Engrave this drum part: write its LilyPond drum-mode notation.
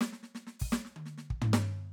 \new DrumStaff \drummode { \time 4/4 \tempo 4 = 125 sn16 sn16 sn16 sn16 sn16 <hho bd>16 <hhp sn>16 sn16 <tommh hh>16 sn16 sn16 bd16 tomfh16 sn8. | }